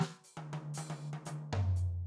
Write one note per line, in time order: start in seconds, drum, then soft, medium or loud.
0.00 snare medium
0.24 hi-hat pedal soft
0.37 high tom medium
0.53 high tom medium
0.74 hi-hat pedal medium
0.74 high tom medium
0.90 high tom medium
1.13 high tom medium
1.25 hi-hat pedal medium
1.25 high tom medium
1.53 floor tom loud
1.76 hi-hat pedal soft